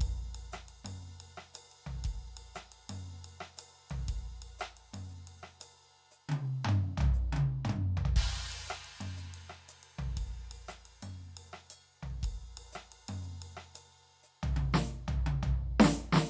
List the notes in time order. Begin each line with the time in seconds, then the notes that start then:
0.01 kick, ride
0.35 ride
0.52 cross-stick, hi-hat pedal
0.69 ride
0.85 mid tom, ride
1.20 ride
1.38 cross-stick
1.54 hi-hat pedal, ride
1.72 ride
1.87 floor tom
2.04 kick, ride
2.37 ride
2.55 cross-stick, hi-hat pedal
2.72 ride
2.90 mid tom, ride
3.05 hi-hat pedal
3.25 ride
3.41 cross-stick
3.58 hi-hat pedal, ride
3.90 floor tom, ride
4.08 kick, ride
4.42 ride
4.59 cross-stick, hi-hat pedal
4.77 ride
4.94 mid tom, ride
5.09 hi-hat pedal
5.28 ride
5.43 cross-stick
5.60 hi-hat pedal, ride
6.11 hi-hat pedal
6.29 high tom
6.32 high tom
6.63 hi-hat pedal, mid tom
6.69 mid tom
6.98 floor tom
7.01 floor tom
7.14 hi-hat pedal
7.33 high tom
7.36 high tom
7.65 hi-hat pedal, mid tom
7.70 mid tom
7.97 floor tom
8.05 floor tom
8.16 kick, ride
8.52 ride
8.67 cross-stick, hi-hat pedal
8.85 ride
9.01 mid tom, ride
9.17 hi-hat pedal
9.34 ride
9.50 cross-stick
9.68 hi-hat pedal, ride
9.83 ride
9.99 floor tom
10.17 kick, ride
10.51 ride
10.68 cross-stick, hi-hat pedal
10.86 ride
11.03 mid tom, ride bell
11.17 hi-hat pedal
11.37 ride
11.53 cross-stick
11.70 hi-hat pedal, ride bell
12.03 floor tom
12.23 kick, ride
12.57 ride
12.73 cross-stick, hi-hat pedal
12.92 ride
13.09 mid tom, ride
13.22 hi-hat pedal
13.42 ride
13.57 cross-stick
13.75 hi-hat pedal, ride
14.23 hi-hat pedal
14.43 floor tom
14.56 high tom
14.73 snare, hi-hat pedal
15.08 floor tom
15.26 high tom
15.43 floor tom
15.80 snare
15.84 snare
16.13 snare
16.16 snare